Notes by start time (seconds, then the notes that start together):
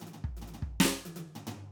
0.00 floor tom, high tom
0.07 high tom
0.13 floor tom
0.24 kick
0.37 high tom
0.42 floor tom
0.47 high tom
0.54 floor tom
0.62 kick
0.80 snare
0.85 snare
1.05 high tom
1.16 high tom
1.35 floor tom
1.47 floor tom